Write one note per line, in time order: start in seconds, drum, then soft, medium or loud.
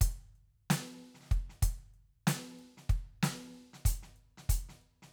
0.01 kick medium
0.01 closed hi-hat loud
0.36 closed hi-hat soft
0.70 closed hi-hat loud
0.70 snare loud
1.15 snare soft
1.20 snare soft
1.23 snare soft
1.24 snare soft
1.31 kick medium
1.31 closed hi-hat soft
1.50 snare soft
1.63 kick medium
1.63 closed hi-hat loud
1.94 closed hi-hat soft
2.27 closed hi-hat loud
2.27 snare loud
2.59 closed hi-hat soft
2.77 snare soft
2.89 kick medium
2.89 closed hi-hat soft
3.23 closed hi-hat medium
3.23 snare loud
3.54 closed hi-hat soft
3.74 snare soft
3.85 closed hi-hat loud
3.85 kick medium
4.03 snare soft
4.16 closed hi-hat soft
4.38 snare soft
4.49 closed hi-hat loud
4.49 kick medium
4.69 snare soft
4.81 closed hi-hat soft
5.02 snare soft